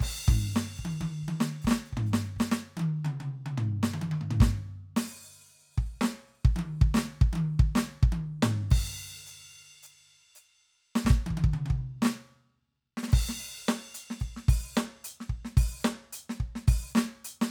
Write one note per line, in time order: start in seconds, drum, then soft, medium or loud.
0.01 kick medium
0.01 crash loud
0.28 kick loud
0.28 floor tom loud
0.54 snare loud
0.54 hi-hat pedal medium
0.76 kick soft
0.76 hi-hat pedal soft
0.85 high tom loud
0.91 hi-hat pedal soft
1.01 kick soft
1.01 hi-hat pedal soft
1.01 high tom loud
1.23 kick soft
1.29 high tom loud
1.41 snare loud
1.62 kick medium
1.62 hi-hat pedal soft
1.67 snare loud
1.71 snare loud
1.86 hi-hat pedal soft
1.93 kick soft
1.97 floor tom loud
2.07 hi-hat pedal soft
2.13 kick soft
2.13 snare loud
2.24 hi-hat pedal soft
2.37 kick soft
2.37 snare loud
2.37 hi-hat pedal soft
2.51 snare loud
2.51 hi-hat pedal soft
2.77 high tom loud
2.80 high tom loud
3.05 mid tom loud
3.21 mid tom loud
3.46 mid tom loud
3.58 floor tom loud
3.83 snare loud
3.94 high tom loud
4.02 high tom loud
4.12 high tom medium
4.21 floor tom medium
4.31 floor tom loud
4.41 kick loud
4.41 snare loud
4.97 open hi-hat loud
4.97 snare loud
5.78 kick medium
6.01 snare loud
6.04 snare loud
6.45 kick loud
6.56 high tom loud
6.59 high tom loud
6.82 kick loud
6.95 snare loud
6.97 snare loud
7.22 kick loud
7.33 high tom loud
7.36 high tom loud
7.60 kick loud
7.76 snare loud
7.78 snare loud
8.03 kick loud
8.12 high tom loud
8.43 snare loud
8.43 floor tom loud
8.71 kick loud
8.71 crash loud
9.27 hi-hat pedal medium
9.83 hi-hat pedal medium
10.36 hi-hat pedal medium
10.96 snare loud
11.05 kick medium
11.05 snare loud
11.11 kick loud
11.27 high tom loud
11.31 kick medium
11.37 high tom loud
11.44 kick loud
11.54 kick medium
11.54 mid tom loud
11.66 mid tom loud
11.70 kick medium
11.99 kick soft
11.99 snare loud
12.05 snare loud
12.98 snare medium
13.03 snare medium
13.03 hi-hat pedal medium
13.08 snare medium
13.12 kick loud
13.12 crash loud
13.29 snare medium
13.40 open hi-hat medium
13.68 snare loud
13.68 hi-hat pedal medium
13.95 closed hi-hat loud
14.11 snare medium
14.20 closed hi-hat soft
14.20 kick medium
14.37 snare medium
14.49 open hi-hat loud
14.49 kick loud
14.75 snare loud
14.75 hi-hat pedal medium
15.05 closed hi-hat loud
15.21 snare medium
15.30 kick medium
15.45 snare medium
15.57 open hi-hat loud
15.57 kick loud
15.81 hi-hat pedal medium
15.85 snare loud
16.13 closed hi-hat loud
16.30 snare medium
16.40 kick medium
16.56 snare medium
16.68 open hi-hat loud
16.68 kick loud
16.90 hi-hat pedal medium
16.95 snare loud
16.98 snare loud
17.25 closed hi-hat loud
17.42 snare loud